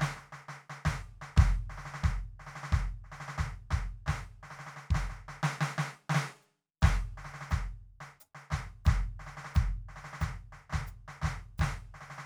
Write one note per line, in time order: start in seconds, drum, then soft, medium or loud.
0.01 snare soft
0.03 snare loud
0.18 snare soft
0.34 snare soft
0.50 snare soft
0.71 snare soft
0.87 kick medium
0.87 snare medium
1.23 snare soft
1.38 kick loud
1.38 snare medium
1.41 snare medium
1.71 snare soft
1.79 snare soft
1.87 snare soft
1.95 snare medium
2.05 kick medium
2.05 snare medium
2.41 snare soft
2.48 snare soft
2.57 snare soft
2.65 snare medium
2.74 kick medium
2.74 snare medium
3.06 snare soft
3.13 snare soft
3.22 snare soft
3.30 snare medium
3.39 kick medium
3.39 snare medium
3.72 kick medium
3.72 snare medium
4.08 kick medium
4.08 snare soft
4.09 snare medium
4.44 snare soft
4.52 snare soft
4.60 snare soft
4.68 snare soft
4.78 snare soft
4.92 kick medium
4.92 snare soft
4.96 snare medium
5.11 snare soft
5.30 snare soft
5.45 snare loud
5.62 snare loud
5.79 snare medium
6.11 snare loud
6.16 snare loud
6.43 hi-hat pedal soft
6.83 kick loud
6.83 snare medium
6.83 hi-hat pedal soft
6.85 snare loud
7.19 snare soft
7.26 snare soft
7.35 snare soft
7.42 snare soft
7.51 kick medium
7.51 snare medium
7.51 hi-hat pedal medium
8.02 snare soft
8.22 hi-hat pedal medium
8.36 snare soft
8.52 kick soft
8.52 snare soft
8.52 snare medium
8.86 kick loud
8.86 snare soft
8.86 hi-hat pedal medium
8.89 snare medium
9.21 snare soft
9.28 snare soft
9.38 snare soft
9.46 snare soft
9.56 kick medium
9.56 snare medium
9.56 hi-hat pedal medium
9.90 snare soft
9.97 snare soft
10.06 snare soft
10.14 snare soft
10.22 kick medium
10.22 snare medium
10.22 hi-hat pedal medium
10.54 snare soft
10.71 snare soft
10.74 kick medium
10.74 snare medium
10.88 hi-hat pedal medium
11.09 snare soft
11.23 kick medium
11.23 snare medium
11.26 snare medium
11.59 kick medium
11.59 snare soft
11.59 hi-hat pedal medium
11.63 snare medium
11.96 snare soft
12.02 snare soft
12.12 snare soft
12.20 snare soft